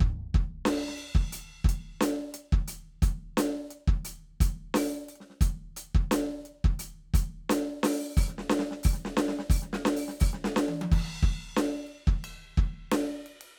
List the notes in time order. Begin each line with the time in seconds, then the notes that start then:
0.01 kick
0.35 kick
0.66 snare, crash
0.89 snare
0.96 open hi-hat
1.15 kick
1.33 closed hi-hat
1.65 kick
1.69 closed hi-hat
2.01 closed hi-hat, snare
2.33 snare, closed hi-hat
2.53 kick
2.68 closed hi-hat
3.03 closed hi-hat, kick
3.38 closed hi-hat, snare
3.71 closed hi-hat
3.88 kick
4.05 closed hi-hat
4.41 closed hi-hat, kick
4.75 open hi-hat, snare
5.09 hi-hat pedal, open hi-hat
5.16 closed hi-hat
5.21 snare
5.30 snare
5.41 closed hi-hat, kick
5.77 closed hi-hat
5.95 kick
6.12 closed hi-hat, snare
6.27 hi-hat pedal
6.46 closed hi-hat
6.65 kick
6.80 closed hi-hat
7.14 closed hi-hat, kick
7.50 closed hi-hat, snare
7.84 open hi-hat, snare
8.17 open hi-hat, kick
8.29 snare
8.50 snare
8.60 snare
8.72 snare
8.84 open hi-hat, kick
8.94 snare
9.06 snare
9.17 snare
9.29 snare
9.39 snare
9.50 open hi-hat, kick
9.63 snare
9.74 snare
9.86 snare
9.97 open hi-hat
10.09 snare
10.21 open hi-hat, kick
10.34 snare
10.45 snare
10.57 snare, hi-hat pedal
10.69 high tom
10.82 high tom
10.92 kick, crash
11.23 kick
11.57 snare, ride
11.87 ride
12.08 kick
12.25 ride bell
12.58 kick
12.92 snare, ride
13.27 ride
13.42 ride